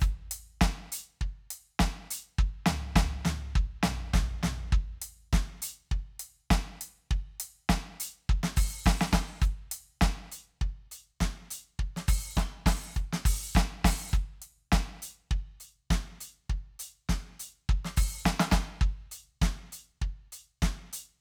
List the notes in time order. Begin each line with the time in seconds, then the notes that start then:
0.01 kick, hi-hat pedal
0.32 closed hi-hat
0.62 kick, snare
0.93 closed hi-hat
1.22 kick
1.51 closed hi-hat
1.80 kick, snare
2.11 closed hi-hat
2.39 kick
2.67 snare, mid tom
2.96 kick, snare, mid tom
3.25 snare, mid tom
3.56 kick
3.84 snare, floor tom
4.14 kick, snare, floor tom
4.44 snare, floor tom
4.73 kick
5.02 closed hi-hat
5.33 kick, snare
5.63 closed hi-hat
5.92 kick
6.20 closed hi-hat
6.51 kick, snare
6.82 closed hi-hat
7.11 kick, ride
7.41 closed hi-hat
7.70 kick, snare
8.01 closed hi-hat
8.30 kick
8.44 snare
8.57 open hi-hat, kick
8.87 kick, snare
9.02 snare
9.13 kick, snare
9.42 kick, hi-hat pedal
9.72 closed hi-hat
10.02 kick, snare
10.32 closed hi-hat
10.62 kick
10.92 closed hi-hat
11.21 kick, snare
11.51 closed hi-hat
11.80 kick
11.97 snare
12.09 open hi-hat, kick
12.36 kick, snare, hi-hat pedal
12.67 open hi-hat, kick, snare
12.95 kick, hi-hat pedal
13.13 snare
13.26 open hi-hat, kick
13.56 kick, snare, hi-hat pedal
13.85 open hi-hat, kick, snare
14.12 kick, hi-hat pedal
14.42 closed hi-hat
14.73 kick, snare
15.03 closed hi-hat
15.31 kick
15.61 closed hi-hat
15.91 kick, snare
16.21 closed hi-hat
16.50 kick
16.80 closed hi-hat
17.10 kick, snare
17.40 closed hi-hat
17.70 kick
17.85 snare
17.97 open hi-hat, kick
18.22 hi-hat pedal
18.26 kick, snare
18.40 snare
18.52 kick, snare
18.82 kick
19.12 closed hi-hat
19.42 kick, snare
19.73 closed hi-hat
20.02 kick
20.33 closed hi-hat
20.63 kick, snare
20.94 closed hi-hat